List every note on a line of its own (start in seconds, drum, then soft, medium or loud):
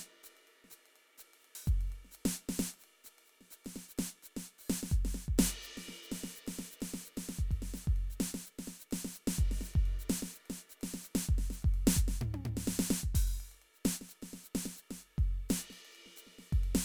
0.01 ride soft
0.24 hi-hat pedal medium
0.24 ride medium
0.38 ride soft
0.48 ride soft
0.65 snare soft
0.71 hi-hat pedal medium
0.71 ride medium
0.86 ride soft
0.96 ride soft
1.18 hi-hat pedal medium
1.18 ride medium
1.34 ride medium
1.40 hi-hat pedal soft
1.45 ride soft
1.56 open hi-hat medium
1.66 kick medium
1.66 hi-hat pedal medium
1.66 ride medium
1.82 ride medium
1.87 hi-hat pedal soft
1.93 ride soft
2.05 snare soft
2.12 hi-hat pedal medium
2.12 ride medium
2.26 snare medium
2.26 ride medium
2.34 hi-hat pedal soft
2.40 ride soft
2.50 snare medium
2.58 snare medium
2.58 hi-hat pedal medium
2.58 ride medium
2.75 ride medium
2.80 hi-hat pedal soft
3.05 snare soft
3.05 hi-hat pedal medium
3.05 ride medium
3.19 ride medium
3.25 hi-hat pedal soft
3.30 ride soft
3.41 snare soft
3.51 hi-hat pedal medium
3.51 ride medium
3.65 snare soft
3.65 ride medium
3.76 snare soft
3.76 ride soft
3.89 hi-hat pedal medium
3.99 snare medium
3.99 ride medium
4.12 ride soft
4.23 hi-hat pedal medium
4.23 ride soft
4.37 snare medium
4.47 ride medium
4.59 hi-hat pedal medium
4.59 ride soft
4.70 snare medium
4.70 ride medium
4.83 snare medium
4.90 kick medium
4.90 hi-hat pedal soft
4.95 ride soft
5.06 snare soft
5.06 ride soft
5.14 snare soft
5.14 ride soft
5.29 kick soft
5.39 snare loud
5.39 ride medium
5.63 hi-hat pedal medium
5.63 ride soft
5.78 snare soft
5.78 ride soft
5.89 snare soft
6.03 hi-hat pedal medium
6.12 snare medium
6.12 ride medium
6.23 snare soft
6.23 ride medium
6.35 hi-hat pedal medium
6.47 snare medium
6.47 ride medium
6.59 snare soft
6.59 ride soft
6.71 hi-hat pedal medium
6.81 snare medium
6.81 ride medium
6.93 snare medium
6.93 ride soft
7.05 hi-hat pedal medium
7.18 snare medium
7.18 ride medium
7.29 snare soft
7.29 ride medium
7.39 kick soft
7.52 kick soft
7.52 ride medium
7.63 snare soft
7.74 snare soft
7.74 hi-hat pedal medium
7.85 kick medium
7.85 ride medium
7.97 ride soft
8.11 hi-hat pedal medium
8.21 snare medium
8.21 ride medium
8.35 snare medium
8.45 hi-hat pedal medium
8.45 ride soft
8.59 snare soft
8.59 ride soft
8.68 snare soft
8.68 ride soft
8.80 hi-hat pedal medium
8.92 snare medium
8.92 ride medium
9.05 snare medium
9.14 hi-hat pedal medium
9.14 ride soft
9.28 snare medium
9.39 kick medium
9.39 ride soft
9.52 snare soft
9.62 snare soft
9.62 hi-hat pedal medium
9.75 kick medium
9.75 ride medium
9.86 ride soft
10.00 hi-hat pedal medium
10.10 snare medium
10.10 ride medium
10.23 snare medium
10.34 hi-hat pedal medium
10.34 ride soft
10.46 ride soft
10.51 snare medium
10.59 ride soft
10.70 hi-hat pedal medium
10.82 snare medium
10.82 ride medium
10.94 snare soft
11.04 hi-hat pedal medium
11.04 ride medium
11.16 snare medium
11.29 kick medium
11.29 ride soft
11.39 snare soft
11.51 snare soft
11.51 hi-hat pedal medium
11.63 kick medium
11.63 ride medium
11.75 ride medium
11.88 snare loud
11.97 kick medium
11.97 hi-hat pedal medium
11.97 ride medium
12.09 snare soft
12.22 floor tom medium
12.35 high tom medium
12.46 floor tom medium
12.58 snare medium
12.68 snare medium
12.80 snare medium
12.91 snare medium
13.04 kick soft
13.15 open hi-hat loud
13.15 kick medium
13.15 ride medium
13.41 ride medium
13.52 ride soft
13.62 ride soft
13.74 hi-hat pedal soft
13.86 snare loud
13.86 ride medium
14.02 snare soft
14.09 hi-hat pedal medium
14.09 ride medium
14.23 snare soft
14.23 ride soft
14.33 snare soft
14.33 ride soft
14.44 hi-hat pedal medium
14.56 snare medium
14.56 ride medium
14.66 snare soft
14.77 hi-hat pedal medium
14.77 ride soft
14.91 kick soft
14.91 snare soft
14.91 ride soft
15.03 ride soft
15.19 kick medium
15.19 ride soft
15.50 snare medium
15.50 hi-hat pedal medium
15.50 ride medium
15.71 snare soft
15.71 ride medium
15.86 ride medium
15.90 hi-hat pedal soft
15.96 ride medium
16.07 snare soft
16.17 hi-hat pedal medium
16.17 ride medium
16.27 snare soft
16.39 snare soft
16.53 kick medium
16.53 ride medium
16.64 ride medium
16.75 snare loud